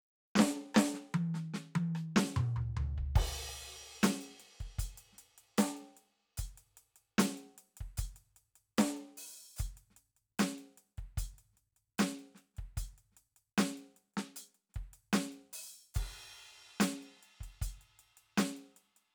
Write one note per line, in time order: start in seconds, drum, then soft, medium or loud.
0.35 snare loud
0.39 snare loud
0.74 cross-stick medium
0.74 snare loud
0.94 snare soft
1.14 high tom loud
1.34 snare soft
1.54 snare medium
1.75 high tom loud
1.95 cross-stick medium
2.16 snare loud
2.36 mid tom loud
2.56 floor tom medium
2.77 floor tom loud
2.98 kick soft
3.15 kick loud
3.15 crash loud
4.03 closed hi-hat loud
4.03 snare loud
4.20 closed hi-hat soft
4.40 closed hi-hat soft
4.60 kick soft
4.60 closed hi-hat soft
4.78 closed hi-hat medium
4.78 kick medium
4.97 closed hi-hat medium
5.12 snare soft
5.18 closed hi-hat medium
5.38 closed hi-hat soft
5.58 closed hi-hat loud
5.58 snare loud
5.77 closed hi-hat soft
5.97 closed hi-hat soft
6.37 closed hi-hat medium
6.37 kick soft
6.57 closed hi-hat soft
6.77 closed hi-hat soft
6.96 closed hi-hat soft
7.18 closed hi-hat loud
7.18 snare loud
7.37 closed hi-hat soft
7.58 closed hi-hat soft
7.77 kick soft
7.77 closed hi-hat soft
7.97 closed hi-hat medium
7.97 kick medium
8.16 closed hi-hat soft
8.36 closed hi-hat soft
8.55 closed hi-hat soft
8.78 closed hi-hat medium
8.78 snare loud
8.96 closed hi-hat soft
9.17 open hi-hat medium
9.56 closed hi-hat medium
9.56 kick medium
9.56 hi-hat pedal medium
9.77 closed hi-hat soft
9.90 snare soft
9.96 closed hi-hat soft
10.16 closed hi-hat soft
10.39 closed hi-hat medium
10.39 snare loud
10.58 closed hi-hat soft
10.77 closed hi-hat soft
10.97 kick soft
10.97 closed hi-hat soft
11.17 closed hi-hat medium
11.17 kick medium
11.38 closed hi-hat soft
11.53 snare soft
11.57 closed hi-hat soft
11.76 closed hi-hat soft
11.98 closed hi-hat medium
11.98 snare loud
12.19 closed hi-hat soft
12.35 snare soft
12.35 closed hi-hat soft
12.54 snare soft
12.54 closed hi-hat soft
12.58 kick soft
12.77 closed hi-hat medium
12.77 kick soft
12.98 closed hi-hat soft
13.12 snare soft
13.17 closed hi-hat soft
13.36 closed hi-hat soft
13.58 closed hi-hat medium
13.58 snare loud
13.77 closed hi-hat soft
13.96 closed hi-hat soft
14.14 snare medium
14.14 closed hi-hat soft
14.36 closed hi-hat medium
14.54 closed hi-hat soft
14.69 snare soft
14.74 kick soft
14.74 closed hi-hat soft
14.93 closed hi-hat soft
15.13 closed hi-hat medium
15.13 snare loud
15.32 closed hi-hat soft
15.53 open hi-hat loud
15.94 kick medium
15.94 hi-hat pedal medium
15.94 crash medium
16.80 closed hi-hat loud
16.80 snare loud
17.02 closed hi-hat soft
17.23 closed hi-hat soft
17.39 kick soft
17.39 snare soft
17.39 closed hi-hat soft
17.61 closed hi-hat medium
17.61 kick medium
17.81 closed hi-hat soft
17.99 closed hi-hat soft
18.17 closed hi-hat soft
18.37 closed hi-hat medium
18.37 snare loud
18.56 closed hi-hat soft
18.76 closed hi-hat soft
18.96 closed hi-hat soft